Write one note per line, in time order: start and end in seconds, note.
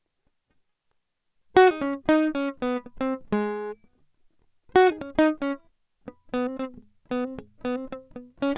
1.57 1.68 F#4
1.68 1.90 D#4
1.83 2.04 C#4
2.10 2.36 D#4
2.36 2.58 C#4
2.63 2.83 B3
3.02 3.28 C4
3.33 3.77 G#3
4.77 4.88 F#4
4.88 4.96 D#4
5.03 5.16 C#4
5.20 5.39 D#4
5.43 5.61 C#4
6.35 6.47 B3
6.48 6.57 C4
6.61 6.70 C4
6.71 6.86 B3
7.12 7.25 B3
7.25 7.50 C4
7.66 7.76 B3
7.77 7.90 C4
7.93 8.04 C4
8.17 8.35 B3
8.44 8.56 C#4